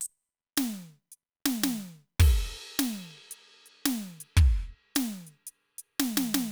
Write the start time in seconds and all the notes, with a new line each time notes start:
0.01 closed hi-hat
0.57 snare, closed hi-hat
1.12 closed hi-hat
1.46 snare
1.64 snare
2.20 kick, crash
2.79 snare, closed hi-hat
3.31 closed hi-hat
3.66 closed hi-hat
3.85 snare, closed hi-hat
4.20 closed hi-hat
4.37 kick, closed hi-hat
4.95 snare, closed hi-hat
5.27 closed hi-hat
5.47 closed hi-hat
5.78 closed hi-hat
6.00 snare
6.17 snare
6.34 snare